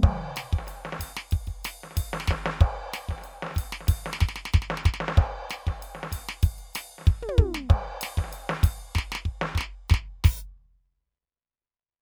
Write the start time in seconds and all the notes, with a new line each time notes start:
0.01 kick, crash
0.03 kick
0.36 snare, hi-hat pedal, ride
0.53 kick
0.59 snare
0.67 snare, hi-hat pedal, ride
0.85 snare
0.92 snare
0.99 kick, hi-hat pedal, ride
1.17 snare
1.31 kick, ride
1.47 kick, ride
1.63 snare, hi-hat pedal, ride
1.83 snare
1.91 snare
1.96 kick, snare, hi-hat pedal, ride
2.00 snare
2.13 snare
2.20 snare
2.27 kick, snare, hi-hat pedal
2.31 snare
2.46 snare
2.60 kick, hi-hat pedal, crash
2.93 snare, hi-hat pedal, ride
3.09 kick, snare
3.18 snare
3.21 snare, hi-hat pedal, ride
3.42 snare
3.47 snare
3.51 snare, hi-hat pedal
3.56 kick, ride
3.72 snare
3.81 snare
3.87 kick, snare, ride
4.06 snare
4.13 snare
4.20 kick, snare
4.29 snare
4.36 snare
4.45 snare
4.53 kick, snare, hi-hat pedal
4.62 snare
4.70 snare
4.77 snare
4.84 kick, snare, hi-hat pedal
4.94 snare
5.00 snare
5.08 snare
5.17 kick, hi-hat pedal, crash
5.50 snare, hi-hat pedal, ride
5.67 kick, snare
5.82 hi-hat pedal, ride
5.95 snare
6.03 snare
6.12 kick, hi-hat pedal, ride
6.29 snare
6.42 kick, hi-hat pedal, ride
6.58 ride
6.73 snare, hi-hat pedal, ride
6.98 snare
7.01 snare
7.06 kick, snare, hi-hat pedal
7.22 mid tom
7.28 high tom
7.37 kick, hi-hat pedal, mid tom
7.54 snare
7.69 kick, hi-hat pedal, crash
8.01 snare, hi-hat pedal, ride
8.17 kick, snare
8.24 snare
8.28 snare, hi-hat pedal
8.33 ride
8.49 snare
8.63 kick, ride
8.95 kick, snare
8.98 snare
9.12 snare
9.15 snare
9.25 kick
9.41 snare
9.55 kick, snare, hi-hat pedal
9.61 snare
9.88 kick, snare, hi-hat pedal
9.94 snare
10.24 open hi-hat, kick, snare
10.39 hi-hat pedal